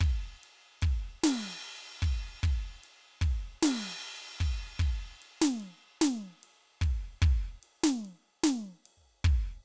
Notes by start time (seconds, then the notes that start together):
0.01 kick, ride
0.44 ride
0.82 kick, ride
1.24 snare, crash
1.65 ride
2.02 kick, ride
2.44 kick, ride
2.84 ride
3.22 kick, ride
3.63 snare, crash
4.03 ride
4.41 kick, ride
4.80 kick, ride
5.22 ride
5.42 snare
5.56 snare
5.60 ride
6.02 snare, ride
6.44 ride
6.82 kick, ride
7.22 kick, ride
7.63 ride
7.84 snare
7.98 snare
8.05 ride
8.44 snare, ride
8.86 ride
8.97 kick
9.25 kick, ride